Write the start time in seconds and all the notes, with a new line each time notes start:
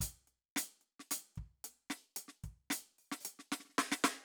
0.01 closed hi-hat, kick
0.28 closed hi-hat
0.57 closed hi-hat, snare
0.82 closed hi-hat
1.00 snare
1.11 closed hi-hat, snare
1.36 kick, closed hi-hat
1.65 closed hi-hat
1.91 snare
2.17 closed hi-hat
2.29 snare
2.44 kick, closed hi-hat
2.71 closed hi-hat, snare
2.99 open hi-hat
3.12 snare
3.21 hi-hat pedal
3.25 closed hi-hat
3.40 snare
3.52 snare
3.60 snare
3.65 snare
3.70 snare
3.74 snare
3.79 snare
3.92 snare
4.04 snare